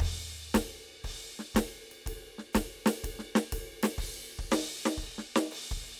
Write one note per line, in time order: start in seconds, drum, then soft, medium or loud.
0.01 kick medium
0.01 floor tom soft
0.01 ride loud
0.54 kick medium
0.54 snare loud
0.54 hi-hat pedal soft
0.54 ride loud
0.89 ride soft
1.05 kick medium
1.05 ride loud
1.40 snare medium
1.56 kick medium
1.56 snare loud
1.56 hi-hat pedal medium
1.56 ride loud
1.92 ride medium
2.07 kick medium
2.07 ride loud
2.39 snare soft
2.54 kick medium
2.54 snare loud
2.54 hi-hat pedal medium
2.54 ride loud
2.87 snare loud
2.87 ride loud
3.05 kick medium
3.05 ride loud
3.20 snare medium
3.36 snare loud
3.53 kick medium
3.53 hi-hat pedal soft
3.53 ride loud
3.84 snare loud
3.84 ride loud
3.99 kick medium
3.99 crash medium
4.40 kick medium
4.49 hi-hat pedal soft
4.49 ride loud
4.53 snare loud
4.86 snare loud
4.98 kick medium
5.03 ride medium
5.19 snare medium
5.37 snare loud
5.52 ride loud
5.72 kick medium
5.84 ride medium